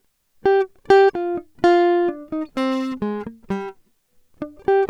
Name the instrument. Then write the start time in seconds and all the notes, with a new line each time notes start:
acoustic guitar
0.47 G4
0.91 G4
1.16 F4
1.65 F4
2.10 D4
2.34 D#4
2.58 C4
3.03 G#3
3.28 A#3
3.52 G3
4.43 D4
4.70 G4